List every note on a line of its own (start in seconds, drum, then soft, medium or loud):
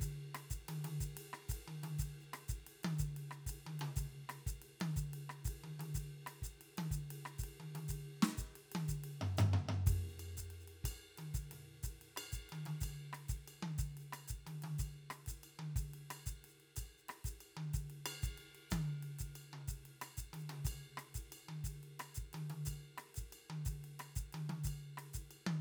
0.01 kick soft
0.01 hi-hat pedal medium
0.01 ride soft
0.35 cross-stick medium
0.35 ride medium
0.50 kick soft
0.50 hi-hat pedal medium
0.68 high tom medium
0.68 ride medium
0.84 high tom medium
0.84 ride medium
1.01 kick soft
1.01 hi-hat pedal medium
1.17 ride medium
1.33 cross-stick medium
1.49 kick soft
1.49 hi-hat pedal medium
1.49 ride medium
1.68 high tom medium
1.84 high tom medium
1.84 ride medium
1.99 kick soft
1.99 hi-hat pedal medium
1.99 ride soft
2.20 hi-hat pedal soft
2.34 cross-stick medium
2.34 ride medium
2.48 kick soft
2.48 hi-hat pedal medium
2.67 ride medium
2.84 high tom loud
2.84 ride soft
2.99 kick soft
2.99 hi-hat pedal medium
3.17 ride soft
3.31 cross-stick medium
3.46 kick soft
3.46 hi-hat pedal medium
3.46 ride medium
3.67 high tom medium
3.80 high tom medium
3.80 ride medium
3.96 kick soft
3.96 hi-hat pedal medium
3.96 ride medium
4.29 cross-stick medium
4.29 ride medium
4.47 kick soft
4.47 hi-hat pedal medium
4.62 ride soft
4.80 high tom loud
4.80 ride soft
4.96 kick soft
4.96 hi-hat pedal medium
5.14 ride medium
5.30 cross-stick medium
5.45 kick soft
5.45 hi-hat pedal medium
5.45 ride medium
5.64 high tom medium
5.80 high tom medium
5.80 ride medium
5.94 kick soft
5.94 hi-hat pedal medium
5.94 ride medium
6.26 cross-stick medium
6.26 ride medium
6.42 kick soft
6.42 hi-hat pedal medium
6.61 ride soft
6.78 high tom medium
6.78 ride medium
6.91 kick soft
6.91 hi-hat pedal medium
7.11 ride medium
7.25 cross-stick medium
7.39 kick soft
7.39 hi-hat pedal medium
7.44 ride medium
7.60 high tom medium
7.75 high tom medium
7.75 ride medium
7.88 kick soft
7.88 hi-hat pedal medium
7.88 ride medium
8.22 snare loud
8.22 ride soft
8.38 kick soft
8.38 hi-hat pedal medium
8.56 ride soft
8.72 high tom loud
8.72 ride medium
8.88 kick soft
8.88 hi-hat pedal medium
9.04 ride medium
9.10 hi-hat pedal soft
9.21 floor tom medium
9.37 floor tom loud
9.37 hi-hat pedal medium
9.53 floor tom medium
9.69 floor tom loud
9.86 kick medium
9.86 hi-hat pedal medium
9.86 ride medium
10.09 hi-hat pedal soft
10.20 ride bell medium
10.37 kick soft
10.37 hi-hat pedal medium
10.50 ride soft
10.60 hi-hat pedal soft
10.68 ride soft
10.84 kick soft
10.84 hi-hat pedal medium
10.84 ride bell medium
11.18 high tom medium
11.18 ride soft
11.34 kick soft
11.34 hi-hat pedal medium
11.34 ride soft
11.51 snare soft
11.51 ride medium
11.51 floor tom soft
11.83 kick soft
11.83 hi-hat pedal medium
11.83 ride soft
12.01 ride soft
12.16 cross-stick medium
12.16 ride bell loud
12.32 kick soft
12.32 hi-hat pedal medium
12.49 high tom medium
12.49 ride soft
12.53 hi-hat pedal soft
12.66 high tom medium
12.66 ride soft
12.81 kick soft
12.81 hi-hat pedal medium
12.81 ride bell medium
13.13 cross-stick medium
13.13 ride soft
13.29 kick soft
13.29 hi-hat pedal medium
13.29 ride soft
13.48 ride bell medium
13.63 high tom medium
13.78 kick soft
13.78 hi-hat pedal medium
13.78 ride bell soft
13.97 hi-hat pedal soft
13.97 ride soft
14.13 cross-stick medium
14.13 ride bell medium
14.28 kick soft
14.28 hi-hat pedal medium
14.47 high tom medium
14.47 ride soft
14.62 high tom medium
14.62 ride soft
14.79 kick soft
14.79 hi-hat pedal medium
14.79 ride bell medium
15.10 cross-stick medium
15.10 ride soft
15.26 kick soft
15.26 hi-hat pedal medium
15.26 ride soft
15.43 ride bell soft
15.59 high tom medium
15.76 kick soft
15.76 hi-hat pedal medium
15.76 ride soft
15.94 ride soft
16.10 cross-stick medium
16.10 ride bell medium
16.26 kick soft
16.26 hi-hat pedal medium
16.44 ride soft
16.48 hi-hat pedal soft
16.60 ride soft
16.76 kick soft
16.76 hi-hat pedal medium
16.76 ride bell medium
16.98 hi-hat pedal soft
17.09 cross-stick medium
17.09 ride medium
17.24 kick soft
17.24 hi-hat pedal medium
17.24 ride soft
17.41 ride bell soft
17.57 high tom medium
17.74 kick soft
17.74 hi-hat pedal medium
17.74 ride soft
17.90 ride soft
18.06 cross-stick medium
18.06 ride bell loud
18.23 kick soft
18.23 hi-hat pedal medium
18.38 ride soft
18.55 ride soft
18.70 kick soft
18.70 hi-hat pedal medium
18.70 high tom loud
18.70 ride bell medium
19.03 ride soft
19.19 kick soft
19.19 hi-hat pedal medium
19.19 ride soft
19.36 ride bell medium
19.41 hi-hat pedal soft
19.53 high tom soft
19.68 kick soft
19.68 hi-hat pedal medium
19.68 ride soft
19.85 ride soft
20.02 cross-stick medium
20.02 ride bell medium
20.17 kick soft
20.17 hi-hat pedal medium
20.33 high tom medium
20.33 ride soft
20.39 hi-hat pedal soft
20.49 high tom medium
20.49 ride soft
20.65 kick soft
20.65 hi-hat pedal medium
20.65 ride bell medium
20.97 cross-stick medium
20.97 ride soft
21.14 kick soft
21.14 hi-hat pedal medium
21.14 ride soft
21.32 ride bell medium
21.36 hi-hat pedal soft
21.49 high tom medium
21.64 kick soft
21.64 hi-hat pedal medium
21.64 ride soft
21.83 ride soft
22.00 cross-stick medium
22.00 ride bell medium
22.15 kick soft
22.15 hi-hat pedal medium
22.33 high tom medium
22.33 ride soft
22.50 high tom medium
22.50 ride soft
22.65 kick soft
22.65 hi-hat pedal medium
22.65 ride bell medium
22.98 cross-stick medium
22.98 ride soft
23.15 kick soft
23.15 hi-hat pedal medium
23.15 ride soft
23.33 ride bell medium
23.50 high tom medium
23.65 kick soft
23.65 hi-hat pedal medium
23.65 ride soft
23.84 ride soft
23.99 cross-stick medium
23.99 ride bell medium
24.16 kick soft
24.16 hi-hat pedal medium
24.33 high tom medium
24.33 ride soft
24.49 high tom medium
24.49 ride soft
24.64 kick soft
24.64 hi-hat pedal medium
24.64 ride bell medium
24.97 cross-stick medium
24.97 ride soft
25.14 kick soft
25.14 hi-hat pedal medium
25.14 ride soft
25.31 ride bell soft
25.47 high tom loud